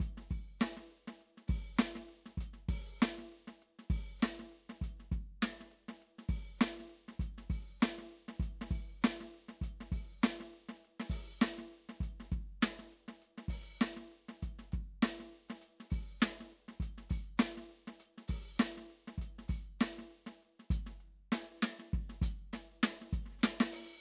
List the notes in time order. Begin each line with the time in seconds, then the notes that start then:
0.01 closed hi-hat, kick
0.18 snare
0.31 kick, open hi-hat
0.60 closed hi-hat, snare, hi-hat pedal
0.78 snare
0.91 closed hi-hat
1.08 snare, closed hi-hat
1.22 closed hi-hat
1.38 snare
1.48 kick, snare, open hi-hat
1.77 closed hi-hat, snare, hi-hat pedal
1.96 snare
2.09 closed hi-hat
2.27 snare, closed hi-hat
2.38 closed hi-hat, kick
2.54 snare
2.69 kick, open hi-hat
3.01 closed hi-hat, snare, hi-hat pedal
3.19 snare
3.33 closed hi-hat
3.48 snare, closed hi-hat
3.63 closed hi-hat
3.80 snare
3.91 kick, open hi-hat
4.20 closed hi-hat, snare, hi-hat pedal
4.40 snare
4.53 closed hi-hat
4.70 snare, closed hi-hat
4.82 closed hi-hat, kick
5.00 snare
5.12 kick, open hi-hat
5.42 closed hi-hat, snare, hi-hat pedal
5.61 snare
5.72 closed hi-hat
5.89 snare, closed hi-hat
6.03 closed hi-hat
6.19 snare
6.30 kick, open hi-hat
6.59 closed hi-hat, snare, hi-hat pedal
6.81 snare
6.90 closed hi-hat
7.09 snare, closed hi-hat
7.20 closed hi-hat, kick
7.39 snare
7.50 open hi-hat, kick
7.81 closed hi-hat, snare, hi-hat pedal
7.99 snare
8.12 closed hi-hat
8.29 snare, closed hi-hat
8.40 closed hi-hat, kick
8.62 snare
8.72 kick, open hi-hat
9.03 closed hi-hat, snare, hi-hat pedal
9.21 snare
9.35 closed hi-hat
9.49 snare, closed hi-hat
9.62 closed hi-hat, kick
9.81 snare
9.93 open hi-hat, kick
10.22 closed hi-hat, snare, hi-hat pedal
10.41 snare
10.54 closed hi-hat
10.70 snare, closed hi-hat
10.86 closed hi-hat
11.01 snare
11.11 open hi-hat, kick
11.41 closed hi-hat, snare, hi-hat pedal
11.59 snare
11.74 closed hi-hat
11.90 snare, closed hi-hat
12.01 closed hi-hat, kick
12.21 snare
12.33 kick, open hi-hat
12.62 closed hi-hat, snare, hi-hat pedal
12.80 snare
12.93 closed hi-hat
13.09 snare, closed hi-hat
13.22 closed hi-hat
13.38 snare
13.49 open hi-hat, kick
13.80 closed hi-hat, snare, hi-hat pedal
13.97 snare
14.12 closed hi-hat
14.29 snare, closed hi-hat
14.43 closed hi-hat, kick
14.60 snare
14.73 kick, open hi-hat
15.03 open hi-hat, snare, hi-hat pedal
15.21 snare
15.34 closed hi-hat
15.50 snare, closed hi-hat
15.62 closed hi-hat
15.81 snare
15.91 open hi-hat, kick
16.21 closed hi-hat, snare, hi-hat pedal
16.41 snare
16.53 closed hi-hat
16.69 snare, closed hi-hat
16.81 closed hi-hat, kick
16.99 snare
17.10 open hi-hat, kick
17.38 closed hi-hat, snare, hi-hat pedal
17.58 snare
17.72 closed hi-hat
17.88 snare, closed hi-hat
18.01 closed hi-hat
18.18 snare
18.29 open hi-hat, kick
18.58 closed hi-hat, snare, hi-hat pedal
18.78 snare
18.91 closed hi-hat
19.08 snare, closed hi-hat
19.19 closed hi-hat, kick
19.39 snare
19.49 open hi-hat, kick
19.80 closed hi-hat, snare, hi-hat pedal
19.99 snare
20.12 closed hi-hat
20.27 closed hi-hat, snare
20.43 closed hi-hat
20.60 snare
20.71 closed hi-hat, kick
20.87 snare
21.01 closed hi-hat
21.33 closed hi-hat, snare
21.63 closed hi-hat, snare
21.80 snare
21.93 kick, closed hi-hat
22.10 snare
22.23 closed hi-hat, kick
22.54 closed hi-hat, snare
22.84 closed hi-hat, snare
23.02 snare
23.14 closed hi-hat, kick
23.27 snare
23.30 snare
23.33 snare
23.40 snare, hi-hat pedal
23.44 snare
23.61 snare
23.73 open hi-hat